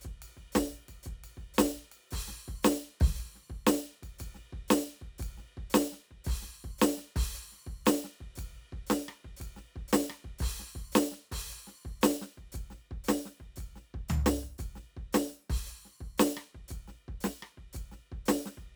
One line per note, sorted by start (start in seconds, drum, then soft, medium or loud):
0.01 kick medium
0.01 hi-hat pedal soft
0.22 ride medium
0.37 kick soft
0.52 kick medium
0.52 snare loud
0.52 hi-hat pedal medium
0.56 ride medium
0.88 kick soft
0.88 ride medium
1.03 kick medium
1.03 hi-hat pedal medium
1.24 hi-hat pedal soft
1.24 ride medium
1.37 kick soft
1.54 hi-hat pedal medium
1.58 kick soft
1.58 snare loud
1.58 ride medium
1.92 ride medium
2.11 kick medium
2.11 hi-hat pedal medium
2.11 crash medium
2.28 snare soft
2.48 kick medium
2.63 snare loud
2.63 hi-hat pedal medium
2.63 ride medium
3.00 kick loud
3.00 crash medium
3.15 hi-hat pedal medium
3.20 ride soft
3.35 snare soft
3.50 kick medium
3.67 snare loud
3.67 hi-hat pedal medium
3.67 ride medium
4.02 kick soft
4.02 ride medium
4.18 kick medium
4.18 hi-hat pedal medium
4.18 ride medium
4.35 snare soft
4.52 kick medium
4.68 snare loud
4.68 hi-hat pedal soft
4.68 ride medium
4.87 snare soft
5.01 kick soft
5.18 kick medium
5.18 hi-hat pedal medium
5.22 ride medium
5.37 snare soft
5.57 kick medium
5.70 hi-hat pedal medium
5.74 snare loud
5.74 ride medium
5.92 snare soft
6.11 kick soft
6.24 kick medium
6.24 hi-hat pedal medium
6.24 crash medium
6.42 snare soft
6.64 kick medium
6.78 snare loud
6.78 hi-hat pedal medium
6.78 ride medium
6.97 snare soft
7.16 kick medium
7.16 crash medium
7.34 hi-hat pedal medium
7.34 ride soft
7.52 snare soft
7.67 kick medium
7.85 snare loud
7.85 hi-hat pedal medium
7.85 ride medium
8.04 snare soft
8.20 kick soft
8.35 kick medium
8.35 hi-hat pedal medium
8.35 ride medium
8.72 kick medium
8.87 snare loud
8.87 hi-hat pedal medium
8.87 ride medium
9.08 cross-stick medium
9.24 kick soft
9.37 kick medium
9.37 hi-hat pedal medium
9.41 ride medium
9.56 snare soft
9.76 kick medium
9.88 hi-hat pedal medium
9.93 snare loud
9.93 ride medium
10.10 cross-stick medium
10.24 kick soft
10.38 kick medium
10.38 hi-hat pedal medium
10.38 crash medium
10.59 snare soft
10.75 kick medium
10.92 snare loud
10.92 hi-hat pedal medium
10.92 ride medium
11.12 snare soft
11.32 kick medium
11.32 crash medium
11.49 hi-hat pedal medium
11.49 ride soft
11.67 snare soft
11.85 kick medium
12.01 snare loud
12.01 hi-hat pedal medium
12.01 ride medium
12.21 snare medium
12.37 kick soft
12.52 kick medium
12.52 hi-hat pedal medium
12.52 ride medium
12.70 snare soft
12.91 kick medium
13.04 hi-hat pedal medium
13.04 ride medium
13.08 snare loud
13.25 snare soft
13.40 kick soft
13.56 kick medium
13.56 hi-hat pedal medium
13.60 ride soft
13.76 snare soft
13.94 kick medium
14.08 floor tom loud
14.08 hi-hat pedal medium
14.26 snare loud
14.43 kick soft
14.58 kick medium
14.58 hi-hat pedal medium
14.58 ride medium
14.75 snare soft
14.97 kick medium
15.13 snare loud
15.13 hi-hat pedal medium
15.28 snare soft
15.50 kick medium
15.50 crash medium
15.66 hi-hat pedal medium
15.70 ride soft
15.85 snare soft
16.01 kick medium
16.18 snare loud
16.18 hi-hat pedal medium
16.18 ride medium
16.37 cross-stick medium
16.55 kick soft
16.68 kick medium
16.68 hi-hat pedal medium
16.68 ride medium
16.88 snare soft
17.08 kick medium
17.20 snare loud
17.20 hi-hat pedal medium
17.20 ride medium
17.42 cross-stick medium
17.57 kick soft
17.73 kick medium
17.73 hi-hat pedal medium
17.73 ride medium
17.92 snare soft
18.12 kick medium
18.26 snare loud
18.26 hi-hat pedal medium
18.30 ride medium
18.46 snare medium
18.57 kick soft